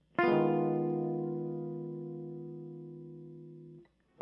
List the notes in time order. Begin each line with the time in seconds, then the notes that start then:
0.19 F4
0.24 B3
0.28 G#3
0.33 D#3